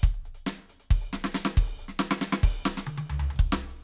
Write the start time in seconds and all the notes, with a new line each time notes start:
0.01 closed hi-hat, kick, hi-hat pedal
0.15 closed hi-hat
0.26 closed hi-hat
0.35 closed hi-hat
0.47 snare
0.59 closed hi-hat
0.70 closed hi-hat
0.91 open hi-hat, kick
1.08 hi-hat pedal
1.14 snare
1.25 snare
1.35 snare
1.46 snare
1.58 open hi-hat, kick
1.68 open hi-hat
1.79 open hi-hat
1.84 hi-hat pedal
1.89 snare
2.00 snare
2.12 snare
2.22 snare
2.33 snare
2.44 open hi-hat, kick
2.66 snare
2.78 snare
2.85 kick, high tom
2.99 high tom
3.11 floor tom
3.20 floor tom
3.31 floor tom, ride
3.37 kick, ride
3.53 snare